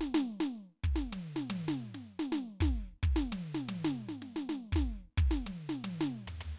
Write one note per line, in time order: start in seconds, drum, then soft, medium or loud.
0.01 snare medium
0.01 hi-hat pedal medium
0.15 snare loud
0.41 snare medium
0.56 hi-hat pedal medium
0.84 kick medium
0.96 snare medium
1.10 hi-hat pedal medium
1.10 high tom medium
1.36 snare medium
1.50 high tom loud
1.64 snare medium
1.64 hi-hat pedal medium
1.95 snare soft
2.20 snare medium
2.20 hi-hat pedal medium
2.32 snare medium
2.61 kick medium
2.61 snare medium
2.75 hi-hat pedal medium
3.03 kick medium
3.16 snare medium
3.30 hi-hat pedal medium
3.30 high tom medium
3.55 snare medium
3.69 high tom medium
3.83 snare medium
3.83 hi-hat pedal medium
4.09 snare medium
4.22 snare soft
4.35 snare medium
4.35 hi-hat pedal medium
4.49 snare medium
4.73 kick medium
4.73 snare medium
4.91 hi-hat pedal medium
5.18 kick medium
5.31 snare medium
5.44 hi-hat pedal medium
5.44 high tom medium
5.69 snare medium
5.84 high tom medium
5.97 snare medium
5.97 hi-hat pedal medium
6.28 floor tom medium
6.41 floor tom medium
6.53 hi-hat pedal medium